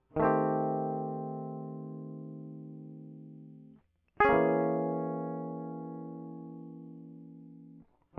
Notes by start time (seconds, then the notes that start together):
0.18 D#3 A3
0.23 C4 G4
4.21 G#4
4.26 C#4
4.30 E3 A#3